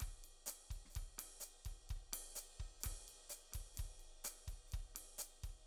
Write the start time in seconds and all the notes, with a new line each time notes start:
0.01 kick, cross-stick, ride
0.08 kick
0.25 ride
0.47 cross-stick, hi-hat pedal, ride
0.71 kick, ride
0.76 kick
0.86 snare
0.91 hi-hat pedal
0.96 kick, cross-stick, ride
1.02 kick
1.19 cross-stick, ride
1.41 hi-hat pedal, ride
1.66 kick, ride
1.72 kick
1.90 kick, ride
1.97 kick
2.13 cross-stick, ride
2.36 hi-hat pedal
2.60 kick
2.65 kick
2.81 cross-stick, snare, hi-hat pedal, ride
2.86 kick
2.92 kick
3.09 ride
3.30 hi-hat pedal, ride
3.53 kick, cross-stick, ride
3.61 kick
3.75 snare, hi-hat pedal, ride
3.80 kick
3.85 kick
4.00 ride
4.25 cross-stick, hi-hat pedal, ride
4.48 kick, ride
4.53 kick, snare
4.68 hi-hat pedal
4.73 kick, ride
4.80 kick
4.96 cross-stick, ride
5.19 hi-hat pedal, ride
5.44 kick, ride
5.50 kick